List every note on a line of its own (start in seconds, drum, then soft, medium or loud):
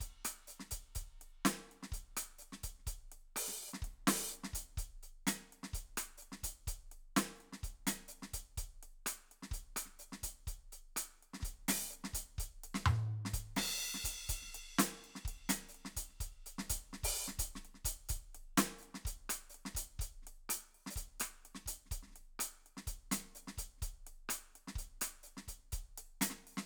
0.01 closed hi-hat medium
0.01 kick soft
0.25 closed hi-hat loud
0.25 cross-stick medium
0.48 closed hi-hat soft
0.48 hi-hat pedal medium
0.60 snare soft
0.72 closed hi-hat medium
0.72 kick soft
0.96 closed hi-hat medium
0.96 kick soft
1.02 kick soft
1.20 snare soft
1.20 closed hi-hat soft
1.46 closed hi-hat loud
1.46 snare medium
1.72 closed hi-hat soft
1.83 snare soft
1.92 closed hi-hat medium
1.92 kick soft
2.17 closed hi-hat loud
2.17 cross-stick medium
2.39 closed hi-hat soft
2.39 hi-hat pedal soft
2.53 snare soft
2.64 closed hi-hat medium
2.64 kick soft
2.79 snare soft
2.87 closed hi-hat medium
2.87 kick soft
3.12 closed hi-hat soft
3.37 open hi-hat loud
3.37 cross-stick medium
3.48 snare soft
3.62 open hi-hat soft
3.69 hi-hat pedal medium
3.74 snare soft
3.83 kick soft
3.83 closed hi-hat soft
4.08 open hi-hat loud
4.08 snare medium
4.32 hi-hat pedal medium
4.44 snare medium
4.54 closed hi-hat medium
4.54 kick soft
4.78 closed hi-hat medium
4.78 kick soft
5.03 closed hi-hat soft
5.27 closed hi-hat loud
5.27 snare medium
5.53 closed hi-hat soft
5.64 snare soft
5.74 closed hi-hat medium
5.74 kick soft
5.98 closed hi-hat loud
5.98 cross-stick medium
6.18 hi-hat pedal soft
6.23 closed hi-hat soft
6.33 snare soft
6.44 closed hi-hat loud
6.44 kick soft
6.68 closed hi-hat medium
6.68 kick soft
6.92 closed hi-hat soft
7.17 closed hi-hat loud
7.17 snare medium
7.36 hi-hat pedal soft
7.41 closed hi-hat soft
7.53 snare soft
7.64 closed hi-hat medium
7.64 kick soft
7.87 closed hi-hat loud
7.87 snare medium
8.09 hi-hat pedal medium
8.13 closed hi-hat soft
8.23 snare soft
8.34 closed hi-hat medium
8.34 kick soft
8.58 closed hi-hat medium
8.58 kick soft
8.64 kick soft
8.83 closed hi-hat soft
9.07 closed hi-hat loud
9.07 cross-stick medium
9.32 closed hi-hat soft
9.43 snare soft
9.51 closed hi-hat medium
9.51 kick soft
9.51 snare soft
9.77 closed hi-hat loud
9.77 cross-stick medium
9.86 snare soft
10.00 closed hi-hat soft
10.00 hi-hat pedal medium
10.13 snare soft
10.24 closed hi-hat medium
10.24 kick soft
10.48 closed hi-hat medium
10.48 kick soft
10.73 closed hi-hat soft
10.97 closed hi-hat loud
10.97 cross-stick medium
11.23 closed hi-hat soft
11.34 snare soft
11.41 kick soft
11.41 snare soft
11.45 closed hi-hat medium
11.69 open hi-hat loud
11.69 snare medium
11.90 closed hi-hat soft
11.90 hi-hat pedal medium
12.04 snare medium
12.14 closed hi-hat loud
12.14 kick soft
12.39 closed hi-hat medium
12.39 kick soft
12.45 kick soft
12.64 closed hi-hat medium
12.75 snare medium
12.86 mid tom loud
12.94 snare soft
12.98 snare soft
13.26 snare medium
13.34 closed hi-hat medium
13.34 kick soft
13.57 snare medium
13.57 crash loud
13.77 hi-hat pedal soft
13.84 closed hi-hat soft
13.95 snare soft
14.05 closed hi-hat loud
14.05 kick soft
14.30 closed hi-hat loud
14.30 kick soft
14.43 snare soft
14.47 snare soft
14.55 closed hi-hat medium
14.79 closed hi-hat loud
14.79 snare loud
15.05 closed hi-hat soft
15.16 snare soft
15.25 kick soft
15.25 closed hi-hat medium
15.50 closed hi-hat loud
15.50 snare medium
15.69 hi-hat pedal soft
15.75 closed hi-hat soft
15.86 snare soft
15.97 closed hi-hat medium
15.97 kick soft
16.10 snare soft
16.21 closed hi-hat medium
16.21 kick soft
16.26 kick soft
16.47 closed hi-hat medium
16.59 snare medium
16.70 closed hi-hat loud
16.70 kick soft
16.76 kick soft
16.93 snare soft
17.04 open hi-hat loud
17.04 kick soft
17.10 kick soft
17.26 snare soft
17.26 hi-hat pedal soft
17.39 closed hi-hat loud
17.39 kick soft
17.56 snare soft
17.65 closed hi-hat soft
17.75 snare soft
17.85 closed hi-hat loud
17.85 kick soft
18.09 closed hi-hat medium
18.09 kick soft
18.17 kick soft
18.35 closed hi-hat soft
18.58 closed hi-hat loud
18.58 snare loud
18.79 hi-hat pedal soft
18.83 closed hi-hat soft
18.95 snare soft
19.06 closed hi-hat medium
19.06 kick soft
19.30 closed hi-hat loud
19.30 cross-stick medium
19.50 hi-hat pedal soft
19.55 closed hi-hat soft
19.66 snare medium
19.75 closed hi-hat loud
19.75 kick soft
20.00 closed hi-hat medium
20.00 kick soft
20.23 snare soft
20.27 closed hi-hat soft
20.50 closed hi-hat loud
20.50 cross-stick medium
20.75 open hi-hat soft
20.87 snare soft
20.91 hi-hat pedal medium
20.96 closed hi-hat medium
20.96 kick soft
21.20 closed hi-hat loud
21.20 cross-stick medium
21.46 closed hi-hat soft
21.55 snare soft
21.66 closed hi-hat medium
21.66 kick soft
21.86 snare soft
21.92 closed hi-hat medium
21.92 kick soft
22.03 snare soft
22.07 snare soft
22.11 snare soft
22.15 snare soft
22.15 closed hi-hat soft
22.40 closed hi-hat loud
22.40 cross-stick medium
22.67 closed hi-hat soft
22.77 snare soft
22.88 closed hi-hat medium
22.88 kick soft
23.12 closed hi-hat loud
23.12 snare medium
23.36 closed hi-hat soft
23.36 hi-hat pedal medium
23.48 snare soft
23.58 closed hi-hat medium
23.58 kick soft
23.78 snare soft
23.83 closed hi-hat medium
23.83 kick soft
23.88 kick soft
24.07 closed hi-hat soft
24.30 closed hi-hat loud
24.30 cross-stick medium
24.56 closed hi-hat soft
24.68 snare soft
24.76 closed hi-hat medium
24.76 kick soft
25.02 closed hi-hat loud
25.02 cross-stick medium
25.24 hi-hat pedal soft
25.28 closed hi-hat soft
25.37 snare soft
25.48 closed hi-hat medium
25.48 kick soft
25.73 closed hi-hat medium
25.73 kick soft
25.79 kick soft
25.98 closed hi-hat medium
26.22 closed hi-hat loud
26.22 snare medium
26.31 snare soft
26.48 open hi-hat soft
26.58 snare medium